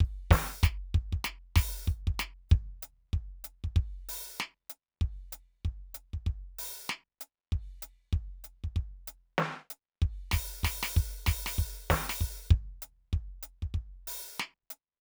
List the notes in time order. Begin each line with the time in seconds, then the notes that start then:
0.01 kick, crash
0.06 ride
0.31 open hi-hat, kick, snare
0.62 closed hi-hat, kick, snare, hi-hat pedal
0.95 kick
1.13 kick
1.25 closed hi-hat, snare
1.56 open hi-hat, kick, snare
1.87 kick, hi-hat pedal
2.08 kick
2.15 kick
2.20 closed hi-hat, snare, hi-hat pedal
2.50 kick, hi-hat pedal
2.83 closed hi-hat
3.14 kick
3.45 closed hi-hat
3.65 kick
3.77 kick, crash
4.10 open hi-hat
4.39 snare, hi-hat pedal
4.70 closed hi-hat
5.02 kick
5.07 crash
5.33 closed hi-hat
5.65 kick
5.95 closed hi-hat
6.14 kick
6.27 kick
6.59 open hi-hat
6.90 snare, hi-hat pedal
7.21 closed hi-hat
7.53 kick
7.57 crash
7.83 closed hi-hat
8.13 kick
8.45 closed hi-hat
8.64 kick
8.77 kick
9.08 open hi-hat
9.39 snare, hi-hat pedal
9.71 closed hi-hat
10.02 kick
10.07 crash
10.32 open hi-hat, kick, snare
10.64 open hi-hat, kick, snare
10.83 open hi-hat, snare
10.97 kick
11.27 open hi-hat, kick, snare
11.47 open hi-hat, snare
11.59 kick
11.91 open hi-hat, kick, snare
12.10 open hi-hat, snare
12.21 kick
12.49 kick, hi-hat pedal
12.83 closed hi-hat
13.14 kick
13.43 closed hi-hat
13.63 kick
13.75 kick
14.08 open hi-hat
14.39 snare, hi-hat pedal
14.71 closed hi-hat